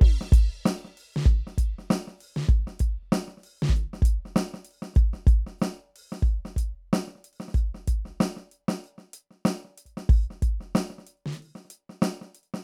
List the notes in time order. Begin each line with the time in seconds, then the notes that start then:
0.01 kick, crash
0.21 snare
0.32 closed hi-hat, kick
0.66 snare, hi-hat pedal
0.85 snare
0.92 hi-hat pedal
0.97 open hi-hat
1.16 snare
1.26 kick, closed hi-hat
1.47 snare
1.58 closed hi-hat, kick
1.78 snare
1.90 snare, hi-hat pedal
2.08 snare
2.18 open hi-hat, hi-hat pedal
2.36 snare
2.49 kick, closed hi-hat
2.67 snare
2.79 closed hi-hat, kick
3.02 snare
3.12 snare, hi-hat pedal
3.28 snare
3.37 snare, hi-hat pedal
3.43 open hi-hat
3.62 snare
3.69 kick
3.76 closed hi-hat
3.93 snare
4.02 closed hi-hat, kick
4.25 snare
4.36 snare, hi-hat pedal
4.54 snare
4.65 closed hi-hat
4.71 open hi-hat
4.82 snare
4.94 kick, snare, open hi-hat
4.98 hi-hat pedal
5.13 snare
5.27 closed hi-hat, kick
5.47 snare
5.58 snare, hi-hat pedal
5.96 open hi-hat
6.12 snare
6.22 kick, hi-hat pedal
6.45 snare
6.56 closed hi-hat, kick
6.93 snare
7.08 snare
7.15 snare
7.24 closed hi-hat
7.33 open hi-hat
7.40 snare
7.48 snare
7.54 kick, open hi-hat
7.59 hi-hat pedal
7.74 snare
7.88 closed hi-hat, kick
8.05 snare
8.10 kick
8.20 snare
8.37 snare
8.51 closed hi-hat
8.68 snare
8.84 open hi-hat
8.98 snare
9.13 closed hi-hat
9.31 snare
9.45 snare
9.65 snare
9.70 snare
9.78 closed hi-hat
9.86 kick, closed hi-hat
9.97 snare
10.09 kick, open hi-hat
10.24 hi-hat pedal
10.30 snare
10.42 kick, closed hi-hat
10.61 snare
10.75 snare, hi-hat pedal
10.90 snare
10.98 snare
11.07 closed hi-hat
11.17 closed hi-hat
11.26 snare
11.32 hi-hat pedal
11.42 open hi-hat
11.55 snare
11.65 snare, hi-hat pedal
11.70 closed hi-hat
11.89 snare
12.02 snare
12.21 snare
12.35 closed hi-hat
12.43 closed hi-hat
12.54 snare